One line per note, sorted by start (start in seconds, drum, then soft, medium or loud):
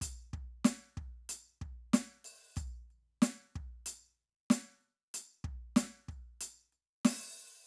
0.02 kick medium
0.02 percussion loud
0.34 kick medium
0.34 percussion soft
0.65 snare loud
0.65 percussion loud
0.98 kick soft
1.30 percussion loud
1.62 kick soft
1.62 percussion soft
1.94 snare loud
1.94 percussion loud
2.25 percussion medium
2.57 kick medium
2.57 percussion medium
2.91 percussion soft
3.23 snare loud
3.23 percussion loud
3.55 kick medium
3.55 percussion soft
3.87 percussion loud
4.51 snare loud
4.51 percussion loud
4.82 percussion soft
5.15 percussion loud
5.45 kick medium
5.45 percussion soft
5.77 snare loud
5.77 percussion loud
5.83 snare soft
6.09 kick soft
6.09 percussion soft
6.41 percussion loud
6.73 percussion soft
7.06 snare loud
7.06 percussion loud